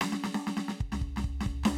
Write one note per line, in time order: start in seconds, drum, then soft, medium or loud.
0.01 snare loud
0.12 snare medium
0.24 snare loud
0.34 snare medium
0.47 snare medium
0.57 snare medium
0.68 snare medium
0.80 kick soft
0.92 snare medium
0.92 floor tom loud
1.01 kick soft
1.16 snare medium
1.16 floor tom loud
1.24 kick soft
1.40 snare loud
1.40 floor tom medium
1.46 kick soft
1.63 snare loud
1.63 floor tom loud